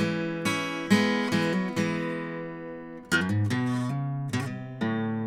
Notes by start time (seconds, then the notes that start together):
0.00 E3 G#3 C#4
0.46 C#4 E4
0.92 G#3 B3 E4
1.33 E3 G#3
1.55 F#3
1.78 E3 G#3
3.52 B2
3.92 C#3
4.34 B2
4.42 C3
4.50 C3
4.82 A2